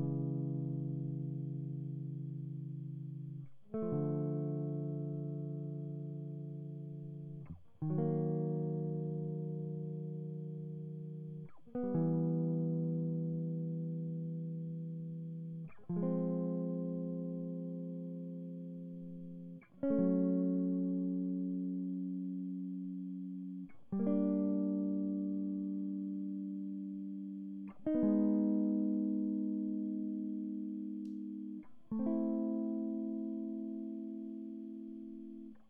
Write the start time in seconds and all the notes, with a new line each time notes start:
0.00 C#3 E3
3.75 A3
3.84 F3
3.94 D3
7.83 D#3
7.91 F#3
7.99 A#3
11.76 B3
11.84 G3
11.96 E3
15.91 F3
15.97 G#3
16.03 C4
19.84 C#4
19.91 A3
20.00 F#3
23.94 G3
24.00 A#3
24.07 D4
27.87 D#4
27.95 B3
28.04 G#3
31.93 A3
32.00 C4
32.07 E4